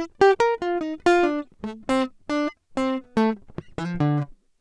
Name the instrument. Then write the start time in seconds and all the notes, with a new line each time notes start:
acoustic guitar
0.00 E4
0.23 G4
0.41 A#4
0.63 F4
0.82 D#4
1.07 F4
1.25 D4
1.65 A3
1.91 C4
2.31 D4
2.79 C4
3.18 A3
3.79 F3
4.02 D3